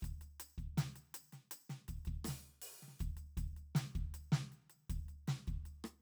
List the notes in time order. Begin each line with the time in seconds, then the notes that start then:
0.01 kick, percussion
0.04 percussion
0.21 percussion
0.40 percussion
0.58 kick, percussion
0.77 snare, percussion
0.96 percussion
1.14 percussion
1.32 snare, percussion
1.51 percussion
1.69 snare, percussion
1.88 kick, percussion
2.05 kick, percussion
2.24 cross-stick, snare, percussion
2.62 percussion
2.82 snare
2.88 snare
2.92 snare
2.97 kick, snare, percussion
3.17 percussion
3.37 kick, percussion
3.56 percussion
3.75 snare, percussion
3.95 kick, percussion
4.14 percussion
4.32 snare, percussion
4.52 percussion
4.70 percussion
4.90 kick, percussion
5.08 percussion
5.28 snare, percussion
5.47 kick, percussion
5.65 percussion
5.84 cross-stick, percussion